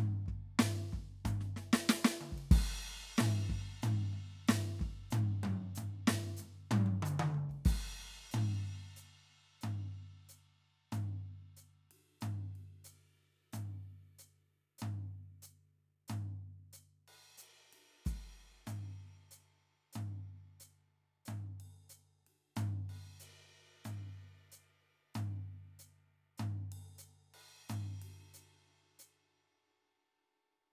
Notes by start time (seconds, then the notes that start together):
0.27 kick, floor tom
0.60 snare, floor tom, hi-hat pedal
0.93 kick, floor tom
1.26 kick, floor tom, hi-hat pedal
1.41 snare
1.57 snare
1.74 snare
1.89 snare, hi-hat pedal
2.05 snare
2.22 mid tom
2.33 kick
2.39 crash
2.52 kick, crash
3.18 snare, floor tom, hi-hat pedal
3.50 kick, floor tom
3.83 floor tom, hi-hat pedal
4.14 floor tom
4.49 snare, floor tom, hi-hat pedal
4.80 kick, floor tom
5.11 floor tom, hi-hat pedal
5.44 floor tom, high tom
5.76 floor tom, hi-hat pedal
6.08 snare, floor tom
6.37 floor tom, hi-hat pedal
6.72 floor tom, high tom
6.87 high tom
7.03 hi-hat pedal, mid tom
7.20 mid tom
7.35 floor tom
7.50 kick, crash
7.66 kick, hi-hat pedal, crash
7.99 floor tom
8.32 floor tom, hi-hat pedal
8.42 floor tom
8.97 hi-hat pedal
9.62 floor tom, hi-hat pedal
10.30 hi-hat pedal
10.93 floor tom, hi-hat pedal
11.57 hi-hat pedal
11.92 ride
12.22 floor tom, hi-hat pedal
12.56 ride
12.85 hi-hat pedal, crash
13.54 floor tom, hi-hat pedal
14.19 hi-hat pedal
14.79 floor tom, hi-hat pedal
15.43 hi-hat pedal
16.09 floor tom, hi-hat pedal
16.74 hi-hat pedal
17.09 crash
17.38 hi-hat pedal, crash
17.74 ride
18.06 kick, hi-hat pedal, crash
18.68 floor tom, hi-hat pedal
19.32 hi-hat pedal
19.94 floor tom, hi-hat pedal
20.61 hi-hat pedal
21.26 floor tom, hi-hat pedal
21.61 crash
21.90 hi-hat pedal
22.27 ride
22.57 floor tom, hi-hat pedal
22.90 crash
23.21 hi-hat pedal, crash
23.85 floor tom, hi-hat pedal
24.53 hi-hat pedal
25.15 floor tom, hi-hat pedal
25.80 hi-hat pedal
26.38 floor tom, hi-hat pedal
26.73 crash
26.99 hi-hat pedal
27.35 crash
27.70 floor tom, hi-hat pedal
28.03 ride
28.16 ride
28.35 hi-hat pedal, crash
29.00 hi-hat pedal